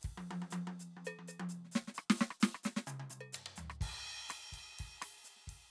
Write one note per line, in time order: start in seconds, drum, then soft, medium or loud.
0.01 kick soft
0.01 hi-hat pedal medium
0.01 ride medium
0.18 high tom medium
0.31 high tom medium
0.42 high tom medium
0.50 hi-hat pedal loud
0.50 high tom medium
0.67 high tom medium
0.80 hi-hat pedal medium
0.97 high tom soft
1.05 hi-hat pedal medium
1.05 percussion loud
1.19 high tom soft
1.28 hi-hat pedal medium
1.28 percussion medium
1.40 high tom medium
1.49 hi-hat pedal medium
1.54 mid tom soft
1.65 snare soft
1.72 snare medium
1.72 hi-hat pedal medium
1.88 snare soft
1.94 cross-stick medium
1.94 hi-hat pedal medium
2.10 snare loud
2.17 hi-hat pedal medium
2.21 snare medium
2.31 cross-stick medium
2.40 snare loud
2.40 hi-hat pedal loud
2.55 cross-stick medium
2.63 snare medium
2.63 hi-hat pedal loud
2.76 snare medium
2.87 hi-hat pedal loud
2.87 mid tom medium
3.00 mid tom medium
3.10 hi-hat pedal loud
3.10 mid tom soft
3.21 percussion medium
3.33 hi-hat pedal loud
3.33 floor tom loud
3.46 floor tom loud
3.56 floor tom medium
3.56 hi-hat pedal medium
3.70 cross-stick medium
3.81 kick soft
3.81 hi-hat pedal soft
3.81 ride loud
4.29 cross-stick medium
4.29 hi-hat pedal medium
4.29 ride medium
4.52 kick soft
4.52 ride medium
4.57 kick soft
4.78 kick soft
4.78 hi-hat pedal soft
4.78 ride medium
5.02 cross-stick medium
5.02 ride medium
5.24 hi-hat pedal medium
5.24 ride soft
5.36 snare soft
5.47 kick soft
5.47 ride medium
5.52 kick soft